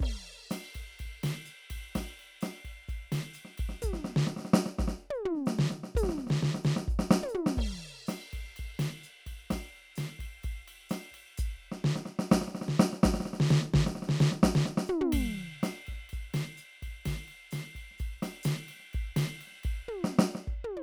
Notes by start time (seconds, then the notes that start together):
0.01 kick, hi-hat pedal, crash
0.51 snare, hi-hat pedal, ride
0.75 kick, ride
0.81 kick
1.00 kick, hi-hat pedal, ride
1.06 kick
1.24 snare, ride
1.46 hi-hat pedal
1.71 kick, ride
1.76 kick
1.95 kick, snare, hi-hat pedal, ride
2.02 kick
2.20 ride
2.42 snare, hi-hat pedal, ride
2.65 kick, ride
2.89 kick, hi-hat pedal, ride
3.13 snare, ride
3.34 hi-hat pedal, ride
3.46 snare
3.58 kick, ride
3.66 kick, snare
3.82 kick, hi-hat pedal, mid tom
3.91 kick, snare
4.05 snare
4.17 snare
4.28 snare
4.37 snare
4.40 snare
4.46 snare
4.54 snare, hi-hat pedal
4.67 snare
4.79 kick, snare
4.88 snare
4.99 hi-hat pedal
5.11 hi-hat pedal, high tom
5.25 floor tom
5.36 snare
5.47 snare, hi-hat pedal
5.60 snare
5.68 snare, hi-hat pedal
5.84 snare
5.96 kick, hi-hat pedal, mid tom
6.04 kick, snare
6.10 snare
6.19 snare
6.28 snare
6.31 snare
6.43 snare
6.55 snare
6.65 snare, hi-hat pedal
6.77 snare
6.89 kick, hi-hat pedal
6.97 kick, snare
7.12 snare
7.24 high tom
7.30 hi-hat pedal
7.35 floor tom
7.47 snare
7.56 kick, hi-hat pedal, crash
7.65 kick
7.72 snare
8.08 snare, hi-hat pedal, ride
8.34 kick, ride
8.39 kick
8.46 snare
8.57 kick, hi-hat pedal, ride
8.65 kick
8.80 snare, ride
9.04 snare, hi-hat pedal
9.27 kick, ride
9.32 kick
9.51 kick, snare, hi-hat pedal, ride
9.58 kick
9.75 ride
9.96 snare, hi-hat pedal, ride
10.20 kick, ride
10.25 kick
10.43 kick, hi-hat pedal, ride
10.68 ride
10.90 snare, hi-hat pedal, ride
11.12 kick, ride
11.38 kick, hi-hat pedal, ride
11.48 kick
11.73 snare
11.85 snare
11.96 snare
12.20 snare
12.32 kick, snare
12.42 snare
12.49 snare
12.56 snare
12.62 snare
12.67 snare
12.69 snare
12.80 snare
12.94 snare
13.04 kick, snare
13.15 snare
13.20 snare, hi-hat pedal
13.26 snare
13.34 snare
13.41 snare
13.49 snare, hi-hat pedal
13.63 snare
13.75 kick, snare
13.87 snare
13.92 hi-hat pedal
13.96 snare
14.03 snare
14.09 snare
14.21 snare, hi-hat pedal
14.33 snare
14.44 kick, snare
14.50 kick
14.56 snare
14.66 snare
14.78 snare
14.87 hi-hat pedal, floor tom
15.01 floor tom
15.13 kick, hi-hat pedal, ride
15.64 snare, hi-hat pedal, ride
15.88 kick, ride
15.93 kick, snare
16.00 snare
16.10 hi-hat pedal, ride
16.14 kick
16.35 snare, ride
16.58 hi-hat pedal, ride
16.83 kick, ride
16.89 kick
17.06 kick, snare, hi-hat pedal, ride
17.13 kick
17.29 ride
17.52 snare, hi-hat pedal, ride
17.76 kick, ride
17.92 snare
17.99 kick, hi-hat pedal, ride
18.23 snare, ride
18.44 snare, hi-hat pedal, ride
18.69 snare, ride
18.77 snare
18.80 snare
18.94 kick, ride
19.17 snare, ride
19.42 ride
19.48 snare
19.53 snare
19.64 kick, ride
19.89 mid tom
20.05 snare
20.20 snare
20.36 snare
20.48 kick
20.54 kick
20.65 mid tom
20.77 high tom